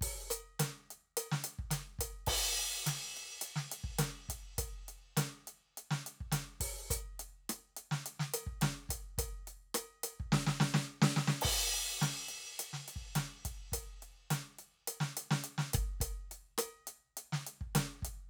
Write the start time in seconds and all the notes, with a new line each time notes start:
0.01 kick, open hi-hat
0.30 hi-hat pedal
0.59 snare, closed hi-hat
0.90 closed hi-hat
1.17 closed hi-hat
1.32 snare
1.44 closed hi-hat
1.59 kick
1.71 snare, closed hi-hat
1.99 kick, closed hi-hat
2.27 kick, crash
2.57 closed hi-hat
2.86 snare, closed hi-hat
3.17 closed hi-hat
3.41 closed hi-hat
3.56 snare
3.72 closed hi-hat
3.84 kick
3.98 snare, closed hi-hat
4.29 kick, closed hi-hat
4.58 kick, closed hi-hat
4.88 closed hi-hat
5.17 snare, closed hi-hat
5.47 closed hi-hat
5.77 closed hi-hat
5.91 snare
6.06 closed hi-hat
6.20 kick
6.32 snare, closed hi-hat
6.60 kick, open hi-hat
6.90 kick, hi-hat pedal, open hi-hat
7.19 closed hi-hat
7.49 cross-stick, closed hi-hat
7.77 closed hi-hat
7.91 snare
8.06 closed hi-hat
8.20 snare
8.34 closed hi-hat
8.47 kick
8.61 snare, closed hi-hat
8.89 kick, closed hi-hat
9.18 kick, closed hi-hat
9.47 open hi-hat
9.74 cross-stick, closed hi-hat
10.03 closed hi-hat
10.20 kick
10.32 snare
10.47 snare
10.60 snare
10.74 snare
11.02 snare
11.16 snare
11.28 snare
11.41 kick, crash
11.73 open hi-hat
12.01 snare, open hi-hat
12.28 closed hi-hat
12.59 closed hi-hat
12.73 snare
12.88 open hi-hat
12.96 kick
13.15 snare, closed hi-hat
13.45 kick, closed hi-hat
13.72 kick, closed hi-hat
14.02 open hi-hat
14.30 snare, open hi-hat
14.59 open hi-hat
14.88 closed hi-hat
15.00 snare
15.17 closed hi-hat
15.31 snare
15.44 closed hi-hat
15.58 snare
15.73 kick, closed hi-hat
16.00 kick, closed hi-hat
16.31 open hi-hat
16.58 cross-stick, closed hi-hat
16.87 closed hi-hat
17.17 closed hi-hat
17.32 snare
17.47 closed hi-hat
17.61 kick
17.75 snare, closed hi-hat
18.02 kick, closed hi-hat